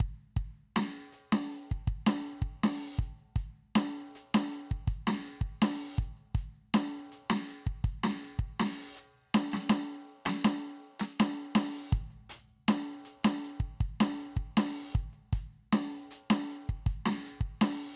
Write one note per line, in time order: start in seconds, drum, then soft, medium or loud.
0.00 kick medium
0.00 closed hi-hat medium
0.18 closed hi-hat soft
0.36 kick medium
0.36 closed hi-hat medium
0.54 closed hi-hat soft
0.76 closed hi-hat loud
0.76 snare loud
0.94 closed hi-hat soft
1.12 closed hi-hat medium
1.32 closed hi-hat soft
1.32 snare loud
1.52 closed hi-hat medium
1.70 kick soft
1.70 closed hi-hat soft
1.87 closed hi-hat soft
1.87 kick medium
2.06 closed hi-hat medium
2.06 snare loud
2.25 closed hi-hat medium
2.42 kick soft
2.42 closed hi-hat soft
2.64 open hi-hat loud
2.64 snare loud
2.99 closed hi-hat medium
2.99 kick medium
2.99 hi-hat pedal medium
3.18 closed hi-hat soft
3.36 closed hi-hat medium
3.36 kick medium
3.55 closed hi-hat soft
3.75 closed hi-hat loud
3.75 snare loud
4.15 closed hi-hat medium
4.34 closed hi-hat medium
4.34 snare loud
4.40 snare soft
4.52 closed hi-hat medium
4.71 kick soft
4.71 closed hi-hat soft
4.88 closed hi-hat medium
4.88 kick medium
5.07 snare loud
5.07 closed hi-hat soft
5.25 closed hi-hat medium
5.41 kick soft
5.41 closed hi-hat soft
5.62 open hi-hat loud
5.62 snare loud
5.98 closed hi-hat loud
5.98 kick medium
5.98 hi-hat pedal medium
6.17 closed hi-hat soft
6.35 closed hi-hat loud
6.35 kick medium
6.54 closed hi-hat soft
6.74 closed hi-hat loud
6.74 snare loud
7.12 closed hi-hat medium
7.30 snare loud
7.30 closed hi-hat soft
7.49 closed hi-hat medium
7.66 kick soft
7.66 closed hi-hat soft
7.84 closed hi-hat medium
7.84 kick medium
8.04 snare loud
8.22 closed hi-hat medium
8.39 kick soft
8.60 open hi-hat loud
8.60 snare loud
8.96 hi-hat pedal medium
9.34 snare loud
9.34 closed hi-hat loud
9.52 snare loud
9.52 closed hi-hat loud
9.70 closed hi-hat loud
9.70 snare loud
10.25 snare loud
10.25 closed hi-hat loud
10.45 closed hi-hat loud
10.45 snare loud
11.00 snare medium
11.00 closed hi-hat loud
11.19 closed hi-hat loud
11.19 snare loud
11.55 open hi-hat loud
11.55 snare loud
11.91 closed hi-hat loud
11.91 kick medium
11.91 hi-hat pedal medium
12.11 closed hi-hat soft
12.29 closed hi-hat loud
12.49 closed hi-hat soft
12.68 closed hi-hat loud
12.68 snare loud
12.87 closed hi-hat soft
13.05 closed hi-hat medium
13.24 snare loud
13.24 closed hi-hat soft
13.44 closed hi-hat medium
13.60 kick soft
13.60 closed hi-hat soft
13.80 closed hi-hat medium
13.80 kick medium
14.00 snare loud
14.00 closed hi-hat soft
14.18 closed hi-hat medium
14.18 snare soft
14.37 kick soft
14.37 closed hi-hat soft
14.57 open hi-hat loud
14.57 snare loud
14.93 closed hi-hat loud
14.93 kick medium
14.93 hi-hat pedal medium
15.13 closed hi-hat soft
15.33 closed hi-hat loud
15.33 kick medium
15.52 closed hi-hat soft
15.73 closed hi-hat loud
15.73 snare loud
16.11 closed hi-hat loud
16.30 snare loud
16.50 closed hi-hat medium
16.67 kick soft
16.67 closed hi-hat soft
16.86 closed hi-hat loud
16.86 kick medium
17.06 snare loud
17.24 closed hi-hat medium
17.41 kick soft
17.41 closed hi-hat soft
17.61 open hi-hat loud
17.61 snare loud